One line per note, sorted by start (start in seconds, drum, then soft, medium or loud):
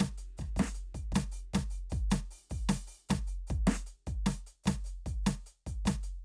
0.01 open hi-hat medium
0.01 kick soft
0.01 snare loud
0.01 hi-hat pedal soft
0.19 closed hi-hat medium
0.38 closed hi-hat medium
0.38 kick medium
0.38 hi-hat pedal soft
0.42 snare soft
0.57 closed hi-hat medium
0.57 kick medium
0.57 snare loud
0.57 hi-hat pedal soft
0.76 closed hi-hat medium
0.96 open hi-hat medium
0.96 kick medium
0.96 hi-hat pedal soft
1.13 open hi-hat loud
1.13 kick medium
1.13 snare loud
1.19 hi-hat pedal soft
1.33 open hi-hat medium
1.55 open hi-hat medium
1.55 kick medium
1.55 snare loud
1.55 hi-hat pedal soft
1.71 open hi-hat medium
1.91 open hi-hat medium
1.91 kick medium
2.12 open hi-hat loud
2.12 snare loud
2.12 hi-hat pedal soft
2.32 open hi-hat medium
2.51 open hi-hat medium
2.51 kick medium
2.70 open hi-hat loud
2.70 snare loud
2.88 open hi-hat medium
3.10 closed hi-hat medium
3.10 kick medium
3.10 snare loud
3.28 open hi-hat medium
3.48 open hi-hat medium
3.48 kick medium
3.68 closed hi-hat medium
3.68 snare loud
3.88 closed hi-hat medium
4.08 open hi-hat medium
4.08 kick medium
4.08 hi-hat pedal soft
4.27 open hi-hat medium
4.27 snare loud
4.36 hi-hat pedal soft
4.48 closed hi-hat medium
4.65 closed hi-hat medium
4.65 kick medium
4.65 snare loud
4.65 hi-hat pedal soft
4.85 closed hi-hat medium
4.85 hi-hat pedal soft
5.07 open hi-hat medium
5.07 kick medium
5.07 hi-hat pedal medium
5.25 closed hi-hat loud
5.25 snare loud
5.25 hi-hat pedal soft
5.43 hi-hat pedal soft
5.47 closed hi-hat medium
5.68 open hi-hat medium
5.68 kick medium
5.68 hi-hat pedal medium
5.86 open hi-hat loud
5.86 kick medium
5.86 snare loud
5.86 hi-hat pedal soft
6.04 closed hi-hat medium